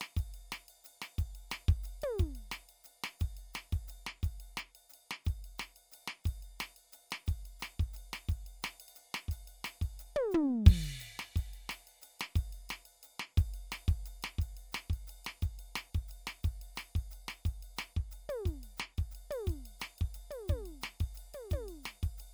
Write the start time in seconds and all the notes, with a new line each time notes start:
0.01 snare, ride
0.16 kick, hi-hat pedal, ride
0.34 ride
0.52 snare, hi-hat pedal, ride
0.68 ride
0.84 hi-hat pedal, ride
1.02 snare, ride
1.18 kick, hi-hat pedal, ride
1.35 ride
1.50 snare, hi-hat pedal, ride
1.68 kick, ride
1.83 hi-hat pedal, ride
2.02 high tom, ride
2.18 kick, hi-hat pedal, ride
2.35 ride
2.51 snare, hi-hat pedal, ride
2.69 ride
2.84 hi-hat pedal, ride
3.04 snare, ride
3.19 kick, hi-hat pedal, ride
3.37 ride
3.54 snare, hi-hat pedal, ride
3.72 kick, ride
3.88 hi-hat pedal, ride
4.06 snare
4.23 kick, hi-hat pedal, ride
4.40 ride
4.57 snare, hi-hat pedal
4.75 ride
4.89 hi-hat pedal
4.94 ride
5.11 snare
5.25 kick, hi-hat pedal, ride
5.44 ride
5.58 snare, hi-hat pedal, ride
5.76 ride
5.91 hi-hat pedal, ride
6.08 snare
6.24 kick, hi-hat pedal, ride
6.42 ride
6.59 snare, hi-hat pedal, ride
6.76 ride
6.92 hi-hat pedal, ride
7.11 snare, ride
7.26 kick, hi-hat pedal, ride
7.45 ride
7.59 snare, hi-hat pedal, ride
7.79 kick, ride
7.93 hi-hat pedal, ride
8.13 snare, ride
8.28 kick, hi-hat pedal, ride
8.46 ride
8.62 snare, hi-hat pedal, ride
8.80 ride
8.88 ride
8.95 hi-hat pedal, ride
9.14 snare, ride
9.28 kick, hi-hat pedal, ride
9.47 ride
9.64 snare, hi-hat pedal, ride
9.81 kick, ride
9.99 hi-hat pedal, ride
10.16 high tom
10.31 floor tom, hi-hat pedal
10.65 kick, hi-hat pedal, ride, crash
10.83 ride
10.99 hi-hat pedal, ride
11.19 snare, ride
11.36 kick, hi-hat pedal, ride
11.53 ride
11.69 snare, hi-hat pedal, ride
11.87 ride
12.01 hi-hat pedal, ride
12.20 snare, ride
12.35 kick, hi-hat pedal, ride
12.53 ride
12.69 snare, hi-hat pedal, ride
12.85 ride
13.03 hi-hat pedal, ride
13.19 snare
13.37 kick, hi-hat pedal, ride
13.54 ride
13.71 snare, hi-hat pedal, ride
13.88 kick, ride
14.05 hi-hat pedal, ride
14.23 snare, ride
14.38 kick, hi-hat pedal, ride
14.57 ride
14.72 snare, hi-hat pedal, ride
14.90 kick, ride
15.07 hi-hat pedal, ride
15.25 snare, ride
15.42 kick, hi-hat pedal, ride
15.59 ride
15.75 snare, hi-hat pedal, ride
15.94 kick, ride
16.08 hi-hat pedal, ride
16.27 snare, ride
16.43 kick, hi-hat pedal, ride
16.61 ride
16.76 snare, hi-hat pedal, ride
16.95 kick, ride
17.11 hi-hat pedal, ride
17.28 snare, ride
17.45 kick, hi-hat pedal, ride
17.63 ride
17.76 snare, hi-hat pedal, ride
17.97 kick
18.11 hi-hat pedal, ride
18.29 high tom, ride
18.45 kick, hi-hat pedal, ride
18.63 ride
18.77 snare, hi-hat pedal
18.98 kick, ride
19.11 hi-hat pedal, ride
19.30 high tom, ride
19.46 kick, hi-hat pedal, ride
19.65 ride
19.79 snare, hi-hat pedal, ride
19.98 kick, ride
20.14 hi-hat pedal, ride
20.30 high tom, ride
20.48 kick, hi-hat pedal, high tom, ride
20.65 ride
20.81 snare, hi-hat pedal, ride
21.00 kick, ride
21.14 hi-hat pedal, ride
21.34 high tom, ride
21.50 kick, hi-hat pedal, high tom, ride
21.68 ride
21.83 snare, hi-hat pedal, ride
22.03 kick, ride
22.17 hi-hat pedal, ride